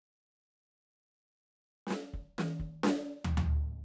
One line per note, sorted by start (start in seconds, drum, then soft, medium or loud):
1.87 snare medium
1.90 snare loud
2.14 kick soft
2.38 snare medium
2.38 high tom loud
2.60 kick soft
2.83 snare loud
2.87 snare loud
3.24 floor tom loud
3.37 floor tom loud